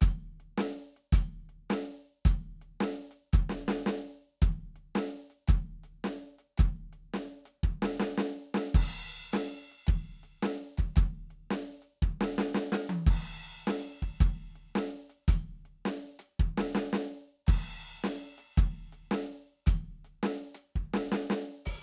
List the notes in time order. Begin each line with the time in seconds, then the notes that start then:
0.01 closed hi-hat, kick
0.40 closed hi-hat
0.58 closed hi-hat, snare
0.97 closed hi-hat
1.12 closed hi-hat, kick
1.49 closed hi-hat
1.70 closed hi-hat, snare
2.25 closed hi-hat, kick
2.62 closed hi-hat
2.80 snare, closed hi-hat
3.11 closed hi-hat
3.33 closed hi-hat, kick
3.50 snare
3.68 snare
3.86 snare
4.42 kick, closed hi-hat
4.76 closed hi-hat
4.95 snare, closed hi-hat
5.30 closed hi-hat
5.48 kick, closed hi-hat
5.84 closed hi-hat
6.04 snare, closed hi-hat
6.39 closed hi-hat
6.58 kick, closed hi-hat
6.93 closed hi-hat
7.14 snare, closed hi-hat
7.46 closed hi-hat
7.63 kick
7.82 snare
8.00 snare
8.18 snare
8.54 snare
8.75 kick, crash
9.33 closed hi-hat, snare
9.72 closed hi-hat
9.87 kick, closed hi-hat
10.23 closed hi-hat
10.43 snare, closed hi-hat
10.78 kick, closed hi-hat
10.96 kick, closed hi-hat
11.31 closed hi-hat
11.51 snare, closed hi-hat
11.82 closed hi-hat
12.02 kick
12.21 snare
12.38 snare
12.55 snare
12.72 snare
12.89 high tom
13.07 kick, crash
13.67 snare, closed hi-hat
14.02 kick, closed hi-hat
14.21 kick, closed hi-hat
14.56 closed hi-hat
14.75 snare, closed hi-hat
15.10 closed hi-hat
15.28 closed hi-hat, kick
15.65 closed hi-hat
15.85 snare, closed hi-hat
16.19 closed hi-hat
16.40 kick
16.58 snare
16.75 snare
16.93 snare
17.47 kick, hi-hat pedal, crash
18.04 snare, closed hi-hat
18.38 closed hi-hat
18.57 kick, closed hi-hat
18.93 closed hi-hat
19.11 snare, closed hi-hat
19.49 closed hi-hat
19.66 closed hi-hat, kick
20.05 closed hi-hat
20.23 snare, closed hi-hat
20.55 closed hi-hat
20.76 kick
20.94 snare
21.12 snare
21.30 snare
21.66 open hi-hat, kick